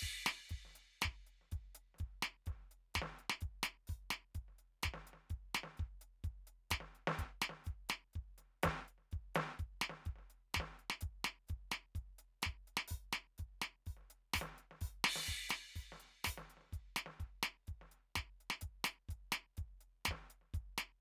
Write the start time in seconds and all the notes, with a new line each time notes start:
0.01 closed hi-hat, kick, hi-hat pedal
0.26 closed hi-hat, snare
0.49 closed hi-hat, kick
0.65 snare
0.71 snare
0.75 closed hi-hat
1.01 closed hi-hat, kick, snare
1.27 closed hi-hat
1.41 snare
1.52 closed hi-hat, kick
1.75 closed hi-hat
1.94 snare
1.99 closed hi-hat, kick
2.22 closed hi-hat, snare
2.46 closed hi-hat, kick, snare
2.53 snare
2.57 snare
2.71 closed hi-hat
2.94 closed hi-hat, kick, snare
3.02 snare
3.19 closed hi-hat
3.30 snare
3.41 closed hi-hat, kick
3.63 closed hi-hat, snare
3.87 open hi-hat, kick, hi-hat pedal
4.10 closed hi-hat, snare
4.35 closed hi-hat, kick
4.48 snare
4.58 closed hi-hat
4.83 closed hi-hat, kick, snare
4.94 snare
5.07 closed hi-hat
5.13 snare
5.30 closed hi-hat, kick
5.54 closed hi-hat, snare
5.63 snare
5.77 open hi-hat, kick
6.01 closed hi-hat
6.24 closed hi-hat, kick
6.47 closed hi-hat
6.71 closed hi-hat, kick, snare
6.80 snare
6.95 closed hi-hat
7.07 snare
7.19 closed hi-hat, kick
7.42 closed hi-hat, snare
7.49 snare
7.64 closed hi-hat, kick, hi-hat pedal
7.89 closed hi-hat, snare
8.13 closed hi-hat, kick
8.38 closed hi-hat, snare
8.63 closed hi-hat, kick, snare
8.88 closed hi-hat
8.98 snare
9.12 closed hi-hat, kick
9.35 closed hi-hat, snare
9.59 closed hi-hat, kick
9.81 closed hi-hat, snare
9.90 snare
10.05 closed hi-hat, kick
10.16 snare
10.19 snare
10.30 closed hi-hat
10.54 closed hi-hat, kick, snare
10.60 snare
10.79 closed hi-hat
10.90 snare
11.01 closed hi-hat, kick
11.24 closed hi-hat, snare
11.47 closed hi-hat, kick, hi-hat pedal
11.71 closed hi-hat, snare
11.95 closed hi-hat, kick
12.18 closed hi-hat
12.42 open hi-hat, kick, snare
12.67 closed hi-hat
12.77 snare
12.88 open hi-hat, kick
13.13 closed hi-hat, snare
13.38 open hi-hat, kick, hi-hat pedal
13.62 closed hi-hat, snare
13.86 open hi-hat, kick
13.97 snare
14.01 snare
14.10 closed hi-hat
14.33 open hi-hat, kick, snare
14.41 snare
14.58 closed hi-hat
14.71 snare
14.81 open hi-hat, kick, hi-hat pedal
15.04 snare, crash
15.16 snare
15.26 open hi-hat, kick
15.49 closed hi-hat, snare
15.76 kick, open hi-hat
15.92 snare
15.96 snare
16.00 closed hi-hat
16.24 open hi-hat, kick, snare
16.38 snare
16.50 closed hi-hat
16.57 snare
16.61 snare
16.64 snare
16.70 closed hi-hat, kick, snare
16.96 closed hi-hat, snare
17.06 snare
17.20 kick, closed hi-hat
17.43 closed hi-hat, snare
17.67 closed hi-hat, kick
17.81 snare
17.91 closed hi-hat
18.15 closed hi-hat, kick, snare
18.40 closed hi-hat
18.50 snare
18.61 closed hi-hat, kick
18.84 open hi-hat, snare
19.08 closed hi-hat, kick, hi-hat pedal
19.32 closed hi-hat, snare
19.57 closed hi-hat, kick
19.81 closed hi-hat
20.05 closed hi-hat, kick, snare
20.11 snare
20.30 closed hi-hat
20.41 snare
20.54 closed hi-hat, kick
20.78 closed hi-hat, snare